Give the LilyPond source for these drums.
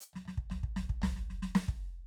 \new DrumStaff \drummode { \time 4/4 \tempo 4 = 116 hhp16 <tomfh sn>16 <tomfh sn>16 bd16 <tomfh sn>16 bd16 <sn tomfh>16 bd16 <tomfh sn>16 sn16 sn16 sn16 sn16 bd8. | }